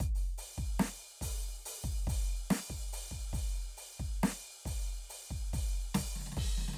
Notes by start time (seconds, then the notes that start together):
0.00 open hi-hat, kick, hi-hat pedal
0.15 open hi-hat
0.38 open hi-hat
0.58 kick, open hi-hat
0.80 open hi-hat, snare
1.00 open hi-hat
1.22 open hi-hat, kick
1.44 open hi-hat
1.66 open hi-hat
1.84 kick, open hi-hat
2.07 open hi-hat, kick
2.28 open hi-hat
2.51 open hi-hat, snare
2.70 kick, open hi-hat
2.93 open hi-hat
3.11 open hi-hat, kick
3.33 open hi-hat, kick
3.56 open hi-hat
3.78 open hi-hat
4.00 kick, open hi-hat
4.24 open hi-hat, snare
4.44 open hi-hat
4.66 open hi-hat, kick
4.87 open hi-hat
5.10 open hi-hat
5.31 kick, open hi-hat
5.54 open hi-hat, kick
5.73 open hi-hat
5.95 open hi-hat, kick, snare
6.16 snare
6.19 snare
6.21 snare
6.26 snare
6.32 snare
6.37 kick, crash
6.44 snare
6.58 snare
6.61 snare
6.68 snare
6.74 snare